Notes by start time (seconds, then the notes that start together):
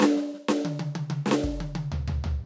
0.00 snare
0.02 snare
0.16 snare
0.34 snare
0.48 snare
0.65 high tom
0.79 high tom
0.95 high tom
1.10 high tom
1.26 snare
1.31 snare
1.43 kick
1.60 high tom
1.75 high tom
1.92 floor tom
2.07 floor tom
2.24 floor tom